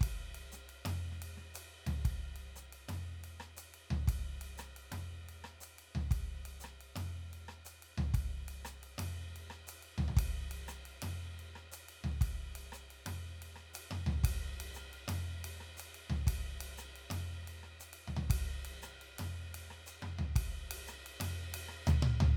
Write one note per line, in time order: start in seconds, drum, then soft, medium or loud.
0.01 kick medium
0.01 ride loud
0.21 snare soft
0.35 ride medium
0.52 snare soft
0.52 hi-hat pedal medium
0.69 ride medium
0.85 mid tom loud
0.85 ride medium
1.11 snare soft
1.22 ride medium
1.37 snare soft
1.54 hi-hat pedal medium
1.54 ride medium
1.87 floor tom medium
1.87 ride medium
2.05 kick medium
2.05 ride medium
2.32 snare soft
2.36 ride medium
2.56 cross-stick soft
2.56 snare soft
2.56 hi-hat pedal medium
2.73 ride medium
2.89 mid tom medium
2.89 ride medium
3.24 ride medium
3.40 cross-stick medium
3.57 hi-hat pedal medium
3.57 ride medium
3.74 ride medium
3.91 floor tom medium
4.08 kick medium
4.08 ride medium
4.41 ride medium
4.58 cross-stick medium
4.58 hi-hat pedal medium
4.77 ride medium
4.92 mid tom medium
4.92 ride medium
5.29 ride medium
5.44 cross-stick medium
5.61 hi-hat pedal medium
5.61 ride medium
5.79 ride medium
5.95 floor tom medium
6.11 kick medium
6.11 ride medium
6.46 ride medium
6.60 hi-hat pedal medium
6.64 cross-stick medium
6.81 ride medium
6.96 mid tom medium
6.96 ride medium
7.33 ride soft
7.49 cross-stick medium
7.65 hi-hat pedal medium
7.65 ride medium
7.83 ride medium
7.98 floor tom medium
8.14 kick medium
8.14 ride medium
8.48 ride medium
8.65 cross-stick medium
8.65 hi-hat pedal medium
8.83 ride medium
8.98 mid tom medium
8.98 ride loud
9.36 ride medium
9.50 cross-stick medium
9.67 hi-hat pedal medium
9.67 ride medium
9.83 ride medium
9.98 floor tom loud
10.08 floor tom medium
10.17 kick medium
10.17 ride loud
10.51 ride medium
10.68 cross-stick medium
10.68 hi-hat pedal medium
10.86 ride medium
11.02 mid tom medium
11.02 ride loud
11.39 ride soft
11.56 cross-stick medium
11.72 hi-hat pedal medium
11.72 ride medium
11.89 ride medium
12.04 floor tom medium
12.21 kick medium
12.21 ride medium
12.56 ride medium
12.72 cross-stick medium
12.72 hi-hat pedal medium
12.91 ride medium
13.06 mid tom medium
13.06 ride medium
13.42 ride medium
13.56 cross-stick medium
13.74 hi-hat pedal medium
13.74 ride loud
13.91 mid tom medium
14.07 floor tom loud
14.24 kick medium
14.24 ride loud
14.60 ride medium
14.74 cross-stick medium
14.74 hi-hat pedal medium
14.93 ride soft
15.08 mid tom loud
15.08 ride loud
15.45 ride loud
15.61 cross-stick soft
15.77 hi-hat pedal medium
15.77 ride medium
15.95 ride medium
16.10 floor tom medium
16.27 kick medium
16.27 ride loud
16.61 ride loud
16.78 cross-stick medium
16.78 hi-hat pedal medium
16.96 ride medium
17.10 mid tom medium
17.10 ride medium
17.48 ride medium
17.63 cross-stick soft
17.80 hi-hat pedal medium
17.80 ride medium
17.93 ride medium
18.08 floor tom medium
18.17 floor tom medium
18.30 kick medium
18.30 ride loud
18.65 ride medium
18.82 cross-stick medium
18.82 hi-hat pedal medium
19.02 ride medium
19.19 mid tom medium
19.19 ride medium
19.55 ride medium
19.71 cross-stick medium
19.86 hi-hat pedal medium
19.86 ride bell medium
20.02 mid tom medium
20.19 floor tom medium
20.36 kick medium
20.36 ride loud
20.71 ride loud
20.87 cross-stick medium
20.87 hi-hat pedal medium
21.06 ride medium
21.20 mid tom medium
21.20 ride loud
21.54 ride loud
21.69 cross-stick medium
21.87 floor tom loud
21.87 hi-hat pedal medium
22.03 high tom loud
22.21 floor tom loud